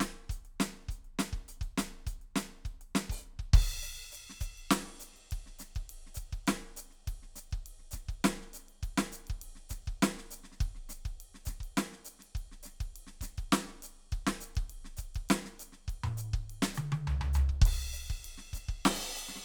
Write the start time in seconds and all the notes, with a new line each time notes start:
0.01 closed hi-hat, snare
0.30 closed hi-hat, kick
0.46 closed hi-hat
0.61 closed hi-hat, snare
0.75 snare
0.89 closed hi-hat, kick, snare
1.05 closed hi-hat
1.19 closed hi-hat, snare
1.33 kick
1.49 closed hi-hat
1.62 kick, closed hi-hat
1.78 closed hi-hat, snare
1.91 snare
2.07 closed hi-hat, kick
2.22 closed hi-hat
2.36 closed hi-hat, snare
2.66 kick, closed hi-hat
2.82 closed hi-hat
2.96 snare
3.09 open hi-hat, kick, snare
3.19 hi-hat pedal
3.40 kick
3.54 kick, crash
3.83 hi-hat pedal
4.13 hi-hat pedal, ride
4.30 snare
4.41 kick, hi-hat pedal, ride
4.58 ride
4.71 snare, ride
5.00 hi-hat pedal, ride
5.13 snare, ride
5.32 kick, ride
5.47 snare
5.59 snare, hi-hat pedal, ride
5.76 kick, ride
5.90 ride
6.07 snare
6.15 kick, hi-hat pedal, ride
6.33 kick, ride
6.48 snare, ride
6.77 hi-hat pedal, ride
6.91 snare, ride
7.08 kick, ride
7.23 snare
7.36 snare, hi-hat pedal, ride
7.52 kick, ride
7.67 ride
7.80 snare
7.92 kick, snare, hi-hat pedal, ride
8.09 kick, ride
8.25 snare, ride
8.42 snare
8.54 hi-hat pedal, ride
8.59 snare
8.69 ride
8.83 kick, ride
8.98 snare
9.13 hi-hat pedal, ride
9.28 kick, ride
9.42 ride
9.56 snare
9.70 kick, snare, hi-hat pedal, ride
9.87 kick, ride
10.03 snare, ride
10.19 snare
10.31 hi-hat pedal, ride
10.44 snare
10.52 snare
10.61 kick, ride
10.75 snare
10.90 snare, hi-hat pedal, ride
11.06 kick, ride
11.21 ride
11.35 snare
11.46 kick, snare, hi-hat pedal, ride
11.61 kick, ride
11.78 snare, ride
11.93 snare
12.05 hi-hat pedal, ride
12.20 snare, ride
12.25 snare
12.36 kick, ride
12.52 snare
12.63 snare, hi-hat pedal, ride
12.81 kick, ride
12.96 ride
13.07 snare
13.21 kick, snare, hi-hat pedal, ride
13.38 kick, ride
13.53 snare, ride
13.68 snare
13.83 hi-hat pedal, ride
13.99 snare
14.13 kick, ride
14.27 snare
14.41 hi-hat pedal, ride
14.56 kick, ride
14.70 ride
14.85 snare
14.97 kick, hi-hat pedal, ride
15.15 kick, ride
15.30 snare, ride
15.46 snare
15.60 hi-hat pedal, ride
15.73 snare
15.88 kick, ride
16.04 mid tom
16.18 hi-hat pedal, ride
16.34 kick
16.50 ride
16.63 snare
16.75 hi-hat pedal, high tom
16.93 high tom
17.08 floor tom
17.22 floor tom
17.34 floor tom, hi-hat pedal
17.50 kick
17.62 kick, ride, crash
17.94 hi-hat pedal, ride
18.10 kick, ride
18.25 ride
18.38 snare
18.54 kick, snare, hi-hat pedal, ride
18.69 kick
18.86 snare, crash
19.16 hi-hat pedal, ride
19.29 snare
19.36 snare